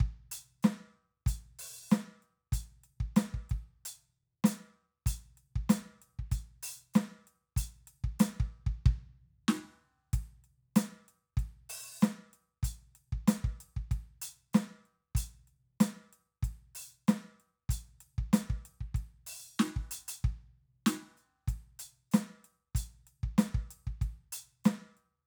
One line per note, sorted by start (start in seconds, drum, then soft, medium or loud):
0.01 kick loud
0.32 open hi-hat loud
0.63 snare loud
0.63 closed hi-hat soft
0.63 hi-hat pedal medium
1.27 closed hi-hat loud
1.27 kick medium
1.60 open hi-hat loud
1.91 closed hi-hat medium
1.91 snare loud
1.91 hi-hat pedal medium
2.23 closed hi-hat soft
2.53 closed hi-hat loud
2.53 kick medium
2.84 closed hi-hat soft
3.01 kick medium
3.17 closed hi-hat loud
3.17 snare loud
3.35 kick medium
3.50 kick medium
3.50 closed hi-hat soft
3.86 closed hi-hat loud
4.45 closed hi-hat loud
4.45 snare loud
5.07 closed hi-hat loud
5.07 kick medium
5.38 closed hi-hat soft
5.56 kick medium
5.70 closed hi-hat loud
5.70 snare loud
6.03 closed hi-hat soft
6.20 kick soft
6.32 closed hi-hat medium
6.32 kick medium
6.64 open hi-hat loud
6.95 snare loud
6.95 closed hi-hat medium
6.95 hi-hat pedal medium
7.28 closed hi-hat soft
7.57 closed hi-hat loud
7.57 kick medium
7.88 closed hi-hat soft
8.05 kick medium
8.20 closed hi-hat loud
8.20 snare loud
8.41 kick medium
8.67 kick medium
8.87 kick loud
9.49 snare loud
10.14 kick medium
10.14 closed hi-hat medium
10.45 closed hi-hat soft
10.77 closed hi-hat loud
10.77 snare loud
11.09 closed hi-hat soft
11.38 kick medium
11.38 closed hi-hat soft
11.70 open hi-hat loud
12.02 closed hi-hat medium
12.02 snare loud
12.02 hi-hat pedal medium
12.34 closed hi-hat soft
12.64 closed hi-hat loud
12.64 kick medium
12.96 closed hi-hat soft
13.13 kick medium
13.28 closed hi-hat loud
13.28 snare loud
13.45 kick medium
13.61 closed hi-hat medium
13.77 kick medium
13.92 kick medium
13.92 closed hi-hat soft
14.23 open hi-hat loud
14.54 closed hi-hat medium
14.54 snare loud
14.54 hi-hat pedal medium
14.86 closed hi-hat soft
15.16 closed hi-hat loud
15.16 kick medium
15.48 closed hi-hat soft
15.81 closed hi-hat loud
15.81 snare loud
16.14 closed hi-hat soft
16.43 kick medium
16.43 closed hi-hat medium
16.76 open hi-hat loud
17.08 snare loud
17.08 closed hi-hat medium
17.08 hi-hat pedal medium
17.41 closed hi-hat soft
17.70 closed hi-hat loud
17.70 kick medium
18.01 closed hi-hat soft
18.19 kick medium
18.34 closed hi-hat loud
18.34 snare loud
18.51 kick medium
18.66 closed hi-hat soft
18.81 kick soft
18.95 kick medium
18.95 closed hi-hat soft
19.27 open hi-hat loud
19.60 snare loud
19.60 hi-hat pedal medium
19.77 kick medium
19.92 closed hi-hat loud
20.09 closed hi-hat loud
20.25 kick medium
20.87 closed hi-hat loud
20.87 snare loud
21.18 closed hi-hat soft
21.48 kick medium
21.48 closed hi-hat medium
21.80 closed hi-hat loud
22.12 closed hi-hat loud
22.12 snare loud
22.12 hi-hat pedal medium
22.45 closed hi-hat soft
22.76 closed hi-hat loud
22.76 kick medium
23.08 closed hi-hat soft
23.24 kick medium
23.39 closed hi-hat medium
23.39 snare loud
23.55 kick medium
23.71 closed hi-hat medium
23.88 kick medium
24.02 kick medium
24.02 closed hi-hat soft
24.33 open hi-hat loud
24.65 snare loud
24.65 hi-hat pedal medium
24.98 closed hi-hat soft